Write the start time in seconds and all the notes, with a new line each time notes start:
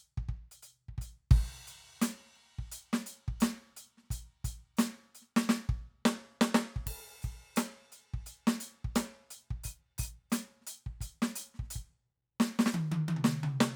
0.18 kick
0.29 kick
0.51 closed hi-hat
0.63 closed hi-hat
0.89 kick
0.98 closed hi-hat, kick
1.31 kick, crash
1.67 closed hi-hat
2.02 closed hi-hat, snare
2.36 closed hi-hat
2.59 kick
2.72 closed hi-hat
2.93 snare
3.06 closed hi-hat
3.28 kick
3.41 open hi-hat, snare
3.77 closed hi-hat
3.98 snare
4.04 snare
4.07 snare
4.10 closed hi-hat, kick, snare
4.45 closed hi-hat, kick
4.77 closed hi-hat, snare, hi-hat pedal
5.15 closed hi-hat
5.22 snare
5.36 snare
5.49 snare
5.69 kick
6.05 snare
6.41 snare
6.55 snare
6.76 kick
6.87 kick, crash
7.22 open hi-hat, kick
7.56 closed hi-hat, snare
7.92 closed hi-hat
8.14 kick
8.23 closed hi-hat, kick
8.47 snare
8.60 closed hi-hat
8.85 kick
8.96 closed hi-hat, snare
9.31 closed hi-hat
9.51 kick
9.64 open hi-hat, kick
9.98 open hi-hat, kick
10.30 closed hi-hat, snare, hi-hat pedal
10.61 snare
10.67 closed hi-hat
10.86 kick
11.01 closed hi-hat, kick
11.22 snare
11.36 closed hi-hat
11.54 snare
11.59 kick, snare
11.68 closed hi-hat, snare
11.76 kick
12.40 snare
12.59 snare
12.66 snare
12.74 high tom
12.92 high tom
13.08 high tom
13.17 mid tom
13.24 snare
13.43 mid tom
13.61 snare